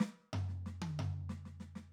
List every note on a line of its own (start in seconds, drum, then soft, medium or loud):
0.01 snare medium
0.21 snare soft
0.34 floor tom loud
0.49 snare soft
0.67 snare soft
0.82 high tom loud
1.00 floor tom medium
1.30 snare soft
1.46 snare soft
1.60 snare soft
1.76 snare soft